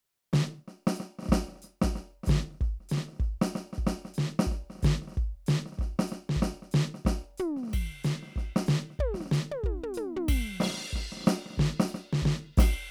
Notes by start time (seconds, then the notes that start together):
0.33 snare, hi-hat pedal
0.42 snare
0.53 snare
0.58 snare
0.65 snare
0.68 snare
0.87 snare
0.94 hi-hat pedal
1.00 snare
1.19 snare
1.22 snare
1.26 snare
1.28 kick, snare
1.32 snare
1.48 snare
1.52 snare
1.56 snare
1.62 snare, hi-hat pedal
1.81 kick, snare
1.95 snare
2.23 kick, snare, hi-hat pedal
2.28 snare
2.36 snare
2.48 snare
2.50 snare
2.54 snare
2.61 kick, snare
2.80 snare
2.89 snare, hi-hat pedal
2.97 snare
3.08 snare
3.13 snare
3.16 snare
3.19 kick, snare
3.21 snare
3.41 snare
3.46 hi-hat pedal
3.55 snare
3.73 snare
3.78 kick
3.87 snare
4.05 snare
4.14 hi-hat pedal
4.18 snare
4.27 snare
4.39 snare
4.46 kick
4.51 snare
4.70 snare
4.75 snare
4.79 snare
4.82 kick, snare, hi-hat pedal
4.84 snare
5.02 snare
5.07 snare
5.12 snare
5.17 kick, snare
5.46 snare, hi-hat pedal
5.66 snare
5.72 snare
5.77 kick, snare
5.81 snare
5.99 snare
6.07 hi-hat pedal
6.12 snare
6.29 snare
6.36 kick
6.42 snare
6.62 snare
6.71 snare, hi-hat pedal
6.94 snare
7.05 kick, snare
7.37 floor tom, hi-hat pedal
7.56 snare
7.63 snare
7.67 snare
7.72 kick, snare, ride
8.04 snare, hi-hat pedal
8.22 snare
8.27 snare
8.32 snare
8.36 kick
8.56 snare
8.66 snare, hi-hat pedal
8.90 snare
8.99 kick, high tom
9.14 snare
9.20 snare
9.26 snare
9.31 snare, hi-hat pedal
9.51 high tom
9.63 kick, mid tom
9.83 mid tom
9.94 hi-hat pedal, mid tom
10.16 floor tom
10.28 kick, ride
10.60 snare, hi-hat pedal, crash
10.63 snare
10.67 snare
10.74 snare
10.77 snare
10.81 snare
10.84 snare
10.93 kick, snare
11.12 snare
11.17 snare
11.20 snare
11.24 snare, hi-hat pedal
11.46 snare
11.50 snare
11.53 snare
11.56 kick, snare
11.59 snare
11.80 snare
11.87 hi-hat pedal
11.94 snare
12.13 snare
12.22 kick, snare
12.57 kick, snare, hi-hat pedal, ride